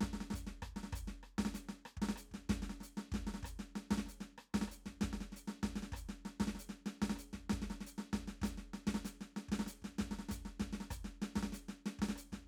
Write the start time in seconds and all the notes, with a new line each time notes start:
0.01 kick, snare
0.13 snare
0.21 snare
0.31 kick, snare
0.36 hi-hat pedal
0.47 snare
0.62 kick, cross-stick
0.76 snare
0.83 snare
0.93 kick, cross-stick, hi-hat pedal
1.01 kick
1.08 snare
1.23 cross-stick
1.39 kick, snare
1.45 snare
1.54 snare, hi-hat pedal
1.69 snare
1.86 cross-stick
1.97 kick
2.02 snare
2.09 snare
2.16 cross-stick, hi-hat pedal
2.32 kick, snare
2.49 kick, snare
2.62 snare
2.70 snare
2.81 snare, hi-hat pedal
2.97 snare
3.12 kick, snare
3.20 kick
3.27 snare
3.34 snare
3.43 kick, cross-stick, hi-hat pedal
3.59 snare
3.76 snare
3.91 kick, snare
3.98 snare
4.06 snare, hi-hat pedal
4.21 snare
4.38 cross-stick
4.54 kick, snare
4.62 snare
4.68 cross-stick, hi-hat pedal
4.86 kick, snare
5.01 kick, snare
5.13 snare
5.21 snare
5.32 snare
5.36 hi-hat pedal
5.48 snare
5.63 kick, snare
5.76 snare
5.83 snare
5.92 kick, cross-stick
5.97 hi-hat pedal
6.09 snare
6.25 snare
6.40 kick, snare
6.48 snare
6.55 snare
6.60 hi-hat pedal
6.69 snare
6.86 snare
7.02 kick, snare
7.10 snare
7.16 cross-stick, hi-hat pedal
7.33 kick, snare
7.50 kick, snare
7.62 snare
7.70 snare
7.81 snare
7.87 hi-hat pedal
7.98 snare
8.13 kick, snare
8.28 snare
8.42 kick, snare, hi-hat pedal
8.58 snare
8.74 snare
8.87 kick, snare
8.95 snare
9.05 snare, hi-hat pedal
9.21 snare
9.37 snare
9.49 kick, snare
9.59 snare
9.67 snare, hi-hat pedal
9.82 kick, snare
9.99 kick, snare
10.11 snare
10.19 snare
10.29 kick, snare, hi-hat pedal
10.45 snare
10.60 kick, snare
10.73 snare
10.80 snare
10.91 kick, cross-stick, hi-hat pedal
11.05 snare
11.22 snare
11.36 kick, snare
11.43 snare
11.53 snare, hi-hat pedal
11.69 snare
11.86 snare
11.99 kick, snare
12.09 snare
12.16 cross-stick, hi-hat pedal
12.32 kick, snare